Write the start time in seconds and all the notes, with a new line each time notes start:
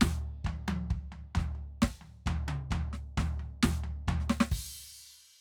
0.01 kick, snare, floor tom, hi-hat pedal
0.45 kick, floor tom
0.54 kick
0.68 floor tom, high tom
0.91 kick, floor tom
1.12 floor tom
1.36 kick, snare, floor tom
1.55 floor tom
1.82 kick, snare, floor tom
2.02 floor tom
2.27 kick, floor tom
2.37 kick
2.48 mid tom
2.71 kick, floor tom
2.93 snare
3.18 kick, snare, floor tom
3.40 floor tom
3.63 kick, snare, floor tom
3.84 floor tom
4.08 kick, floor tom
4.19 kick, snare
4.30 snare
4.41 snare
4.52 kick, crash